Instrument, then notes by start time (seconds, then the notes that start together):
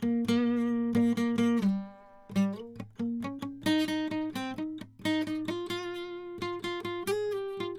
acoustic guitar
0.04 A#3
0.30 A#3
0.96 A#3
1.19 A#3
1.40 A#3
1.59 G3
2.37 G3
2.55 A#3
3.01 A#3
3.26 C#4
3.44 C#4
3.67 D#4
3.90 D#4
4.13 D#4
4.37 C4
4.60 D#4
5.06 D#4
5.29 D#4
5.50 F4
5.71 F4
6.43 F4
6.65 F4
6.86 F4
7.09 G#4
7.34 G4
7.62 F4